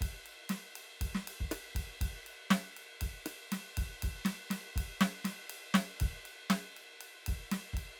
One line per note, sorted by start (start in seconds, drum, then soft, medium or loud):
0.01 kick medium
0.01 ride loud
0.26 ride medium
0.50 snare medium
0.50 ride loud
0.76 ride loud
1.01 kick medium
1.01 ride loud
1.15 snare medium
1.28 ride loud
1.41 kick medium
1.52 cross-stick medium
1.52 ride loud
1.75 kick medium
1.75 ride loud
2.01 kick medium
2.01 ride loud
2.27 ride medium
2.51 snare loud
2.51 ride loud
2.77 ride medium
3.01 kick medium
3.01 ride loud
3.26 cross-stick medium
3.26 ride loud
3.52 snare medium
3.52 ride loud
3.77 kick medium
3.77 ride loud
4.03 kick medium
4.03 ride loud
4.25 snare loud
4.25 ride loud
4.51 snare medium
4.51 ride loud
4.76 kick medium
4.76 ride loud
5.01 snare loud
5.01 ride loud
5.25 snare medium
5.25 ride loud
5.50 ride loud
5.74 snare loud
5.74 ride loud
6.00 kick medium
6.00 ride loud
6.26 ride medium
6.50 snare loud
6.50 ride loud
6.77 ride medium
7.01 ride loud
7.27 kick medium
7.27 ride loud
7.52 snare loud
7.52 ride loud
7.74 kick medium
7.74 ride loud